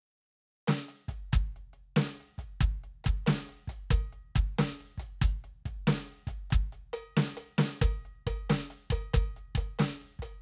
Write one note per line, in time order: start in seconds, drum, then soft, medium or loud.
0.68 snare loud
0.68 closed hi-hat loud
0.88 closed hi-hat medium
1.08 kick medium
1.08 closed hi-hat medium
1.33 kick loud
1.33 closed hi-hat medium
1.56 closed hi-hat soft
1.73 closed hi-hat soft
1.96 snare loud
1.96 closed hi-hat loud
2.20 closed hi-hat soft
2.38 kick medium
2.38 closed hi-hat medium
2.61 kick loud
2.61 closed hi-hat medium
2.84 closed hi-hat soft
3.04 kick loud
3.04 closed hi-hat loud
3.26 snare loud
3.26 closed hi-hat loud
3.49 closed hi-hat soft
3.68 kick medium
3.68 closed hi-hat medium
3.90 kick loud
3.90 closed hi-hat loud
4.13 closed hi-hat soft
4.35 kick loud
4.35 closed hi-hat medium
4.58 snare loud
4.58 closed hi-hat loud
4.81 closed hi-hat soft
4.98 kick medium
4.98 closed hi-hat medium
5.21 closed hi-hat medium
5.21 kick loud
5.44 closed hi-hat soft
5.65 kick medium
5.65 closed hi-hat medium
5.87 snare loud
5.87 closed hi-hat loud
6.27 kick medium
6.27 closed hi-hat medium
6.50 kick loud
6.50 closed hi-hat medium
6.72 closed hi-hat medium
6.93 closed hi-hat loud
7.17 snare loud
7.17 closed hi-hat loud
7.37 closed hi-hat loud
7.58 snare loud
7.58 closed hi-hat loud
7.81 kick loud
7.81 closed hi-hat loud
8.05 closed hi-hat soft
8.27 kick loud
8.27 closed hi-hat loud
8.49 snare loud
8.49 closed hi-hat loud
8.70 closed hi-hat medium
8.90 kick loud
8.90 closed hi-hat loud
9.13 kick loud
9.13 closed hi-hat loud
9.36 closed hi-hat medium
9.55 kick loud
9.55 closed hi-hat loud
9.79 snare loud
9.79 closed hi-hat loud
10.04 closed hi-hat soft
10.19 kick medium
10.19 closed hi-hat loud